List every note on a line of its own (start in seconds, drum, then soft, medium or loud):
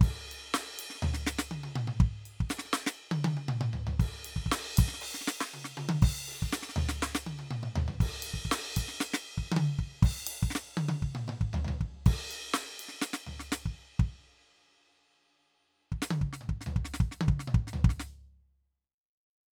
0.01 kick loud
0.01 ride loud
0.32 ride medium
0.54 snare loud
0.54 ride loud
0.79 ride medium
0.90 snare medium
0.95 snare soft
1.02 floor tom loud
1.14 snare medium
1.27 snare loud
1.39 snare loud
1.51 high tom medium
1.64 high tom medium
1.76 mid tom loud
1.88 mid tom medium
2.00 kick loud
2.26 ride bell soft
2.40 kick medium
2.50 snare loud
2.50 ride medium
2.59 snare medium
2.65 snare soft
2.73 snare loud
2.87 snare loud
3.11 high tom loud
3.25 high tom loud
3.37 high tom medium
3.49 mid tom loud
3.61 mid tom loud
3.73 floor tom medium
3.87 floor tom medium
4.00 kick loud
4.00 ride loud
4.25 ride medium
4.36 kick medium
4.46 kick medium
4.52 snare loud
4.52 ride loud
4.78 kick loud
4.78 ride loud
4.88 snare medium
4.94 snare soft
5.01 crash loud
5.14 snare medium
5.21 snare soft
5.28 snare loud
5.41 snare loud
5.54 high tom soft
5.65 snare medium
5.77 high tom medium
5.89 high tom loud
6.02 kick loud
6.02 crash loud
6.27 ride medium
6.42 kick medium
6.53 snare loud
6.53 ride medium
6.63 snare medium
6.69 snare medium
6.76 floor tom loud
6.89 snare loud
7.02 snare loud
7.15 snare loud
7.27 high tom medium
7.39 high tom soft
7.51 mid tom loud
7.63 mid tom medium
7.76 floor tom loud
7.88 floor tom medium
8.00 kick loud
8.00 ride loud
8.22 ride medium
8.34 kick medium
8.45 kick medium
8.52 snare loud
8.52 ride loud
8.77 kick medium
8.77 ride loud
8.88 snare medium
8.94 snare soft
9.01 snare loud
9.14 snare loud
9.38 kick medium
9.52 high tom loud
9.57 high tom loud
9.79 kick medium
10.03 kick loud
10.03 crash loud
10.27 ride loud
10.43 kick medium
10.51 snare medium
10.55 snare loud
10.77 high tom loud
10.89 high tom loud
11.02 kick medium
11.15 mid tom loud
11.28 mid tom medium
11.28 mid tom loud
11.41 kick medium
11.53 floor tom medium
11.53 floor tom loud
11.65 floor tom medium
11.68 floor tom loud
11.81 kick medium
12.06 kick loud
12.06 ride loud
12.31 ride medium
12.54 snare loud
12.54 ride medium
12.80 ride medium
12.89 snare medium
12.94 snare soft
13.02 snare loud
13.13 snare loud
13.27 floor tom medium
13.40 snare medium
13.52 snare loud
13.66 kick medium
14.00 kick loud
15.92 kick medium
16.02 snare loud
16.11 high tom loud
16.21 kick medium
16.33 snare medium
16.41 mid tom medium
16.49 kick medium
16.61 snare medium
16.66 floor tom medium
16.76 kick medium
16.85 snare medium
16.94 snare medium
17.00 kick loud
17.12 snare medium
17.21 high tom loud
17.28 kick loud
17.40 snare medium
17.48 mid tom medium
17.54 kick loud
17.67 snare medium
17.73 floor tom loud
17.84 kick loud
17.90 snare medium
18.00 snare medium